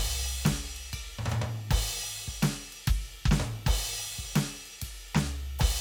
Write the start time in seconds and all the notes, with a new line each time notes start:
0.41 hi-hat pedal
0.46 kick, snare, ride
0.77 ride
0.94 kick, ride bell
1.19 high tom
1.26 hi-hat pedal, high tom
1.32 high tom
1.42 high tom
1.71 kick, crash
2.28 kick
2.34 hi-hat pedal
2.43 snare, ride
2.73 ride
2.88 kick, ride
3.26 kick, hi-hat pedal
3.32 snare
3.40 high tom
3.67 kick, crash
4.19 kick
4.30 hi-hat pedal
4.36 snare, ride
4.66 ride
4.82 kick, ride
5.15 snare, hi-hat pedal, floor tom
5.59 kick, crash